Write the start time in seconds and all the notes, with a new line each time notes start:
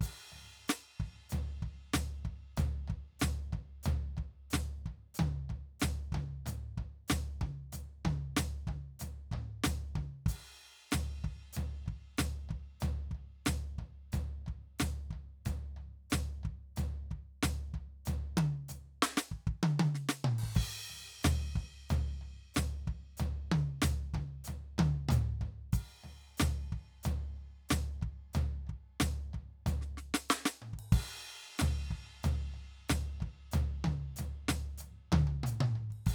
0.01 kick, hi-hat pedal, crash
0.32 floor tom
0.68 snare, hi-hat pedal, percussion
1.00 kick, floor tom
1.30 floor tom, hi-hat pedal
1.62 kick, floor tom
1.93 snare, floor tom, hi-hat pedal
2.25 kick, floor tom
2.57 kick, floor tom, hi-hat pedal
2.88 kick, floor tom
3.19 snare, floor tom, hi-hat pedal
3.53 kick, floor tom
3.83 floor tom, hi-hat pedal
4.17 kick, floor tom
4.50 snare, floor tom, hi-hat pedal
4.86 kick, floor tom
5.14 hi-hat pedal
5.19 floor tom, high tom
5.49 kick, floor tom
5.80 snare, floor tom, hi-hat pedal
6.12 kick, floor tom, high tom
6.46 floor tom, hi-hat pedal, mid tom
6.78 kick, floor tom
7.08 snare, floor tom, hi-hat pedal
7.41 kick, floor tom, high tom
7.72 floor tom, hi-hat pedal
8.05 kick, floor tom, high tom
8.37 snare, floor tom, hi-hat pedal
8.67 kick, floor tom, high tom
8.99 floor tom, hi-hat pedal
9.32 kick, floor tom, mid tom
9.64 snare, floor tom, hi-hat pedal
9.95 kick, floor tom, high tom
10.26 kick, hi-hat pedal, crash
10.91 snare, floor tom, hi-hat pedal
11.24 kick, floor tom
11.53 floor tom, hi-hat pedal
11.86 kick, floor tom
12.18 snare, floor tom, hi-hat pedal
12.49 kick, floor tom
12.80 floor tom, hi-hat pedal
13.11 kick, floor tom
13.46 snare, floor tom, hi-hat pedal
13.78 kick, floor tom
14.12 kick, floor tom, hi-hat pedal
14.47 kick, floor tom
14.79 snare, floor tom, hi-hat pedal
15.11 kick, floor tom
15.45 kick, floor tom, hi-hat pedal
15.52 floor tom
15.76 floor tom
16.10 snare, floor tom, hi-hat pedal
16.43 kick, floor tom
16.76 floor tom, hi-hat pedal
17.11 kick, floor tom
17.43 snare, floor tom, hi-hat pedal
17.74 kick, floor tom
18.06 floor tom, hi-hat pedal
18.37 high tom, percussion
18.69 floor tom, hi-hat pedal
19.02 snare
19.17 snare
19.32 kick
19.47 kick
19.63 high tom
19.80 high tom
19.95 snare
20.09 snare
20.24 mid tom
20.39 crash
20.43 kick
20.55 kick, crash
20.90 floor tom
21.23 snare, floor tom, hi-hat pedal
21.56 kick, floor tom
21.90 floor tom, hi-hat pedal
22.21 floor tom
22.54 snare, floor tom, hi-hat pedal
22.87 kick, floor tom
23.17 floor tom, hi-hat pedal
23.52 floor tom, high tom
23.82 snare, floor tom, hi-hat pedal
24.14 kick, floor tom, high tom
24.44 floor tom, hi-hat pedal
24.78 floor tom, high tom
25.09 floor tom, hi-hat pedal, mid tom
25.41 kick, floor tom
25.73 kick, hi-hat pedal, crash
26.04 floor tom
26.37 snare, floor tom, hi-hat pedal
26.48 floor tom
26.72 kick, floor tom
27.03 floor tom, hi-hat pedal
27.37 floor tom
27.69 snare, floor tom, hi-hat pedal
28.02 kick, floor tom
28.33 floor tom, hi-hat pedal
28.67 kick, floor tom
29.00 snare, floor tom, hi-hat pedal
29.33 kick, floor tom
29.66 kick, floor tom, hi-hat pedal
29.82 snare
29.97 snare
30.14 snare
30.29 snare, hi-hat pedal
30.46 snare
30.62 mid tom
30.73 kick
30.79 crash
30.92 kick, crash
31.58 snare, floor tom, hi-hat pedal
31.91 kick, floor tom
32.24 floor tom, hi-hat pedal
32.54 floor tom
32.89 snare, floor tom, hi-hat pedal
33.20 kick, floor tom
33.52 floor tom, hi-hat pedal
33.84 floor tom, high tom
34.16 floor tom, hi-hat pedal
34.49 snare, floor tom
34.78 floor tom, hi-hat pedal
35.12 floor tom, high tom
35.27 high tom
35.44 hi-hat pedal, mid tom
35.61 mid tom
35.76 floor tom
35.90 kick, crash
36.06 kick, hi-hat pedal, crash